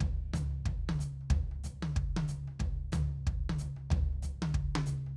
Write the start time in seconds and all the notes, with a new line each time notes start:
0.01 kick, floor tom
0.21 kick
0.34 floor tom, hi-hat pedal, high tom
0.51 high tom
0.66 kick, floor tom
0.90 high tom
1.00 floor tom, hi-hat pedal
1.21 high tom
1.31 kick, floor tom
1.52 high tom
1.64 floor tom, hi-hat pedal
1.83 high tom
1.96 kick, floor tom
2.17 high tom
2.29 kick, floor tom, hi-hat pedal
2.48 high tom
2.60 kick, floor tom
2.93 floor tom, hi-hat pedal, high tom
3.27 kick, floor tom
3.50 high tom
3.59 kick, floor tom, hi-hat pedal
3.77 high tom
3.91 kick, floor tom
4.13 high tom
4.23 floor tom, hi-hat pedal
4.43 high tom
4.55 kick, floor tom
4.76 high tom
4.87 floor tom, hi-hat pedal
5.07 high tom